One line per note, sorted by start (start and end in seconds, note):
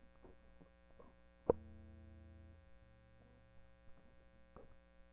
1.51 1.58 A#4